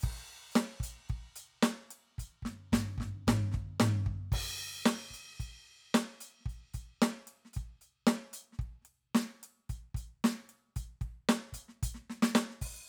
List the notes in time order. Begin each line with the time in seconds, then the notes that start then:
0.01 kick, hi-hat pedal, crash
0.29 closed hi-hat
0.52 hi-hat pedal
0.56 snare
0.80 closed hi-hat, kick
1.09 kick, closed hi-hat
1.36 closed hi-hat
1.63 snare
1.91 closed hi-hat
2.12 snare
2.19 closed hi-hat, kick
2.43 kick, snare
2.47 floor tom
2.73 kick, snare, floor tom
2.98 kick, snare, floor tom
3.28 kick, snare, floor tom
3.52 kick, snare, floor tom
3.80 snare, floor tom, hi-hat pedal
4.06 kick, floor tom
4.32 kick, crash
4.56 closed hi-hat
4.86 snare
5.11 closed hi-hat, kick
5.40 closed hi-hat, kick
5.64 closed hi-hat
5.95 snare
6.21 closed hi-hat
6.41 snare
6.46 closed hi-hat, kick
6.74 closed hi-hat, kick
7.02 snare
7.27 closed hi-hat
7.45 snare
7.54 closed hi-hat, kick
7.81 closed hi-hat
8.07 snare
8.33 closed hi-hat
8.53 snare
8.59 kick, closed hi-hat
8.82 snare, closed hi-hat
9.15 snare
9.43 closed hi-hat
9.70 closed hi-hat, kick
9.95 closed hi-hat, kick
10.24 snare
10.49 closed hi-hat
10.76 closed hi-hat, kick
11.01 kick, closed hi-hat
11.29 snare
11.53 closed hi-hat, kick
11.69 snare
11.83 closed hi-hat, kick
11.95 snare
12.10 snare
12.23 snare
12.35 snare
12.50 snare
12.62 open hi-hat, kick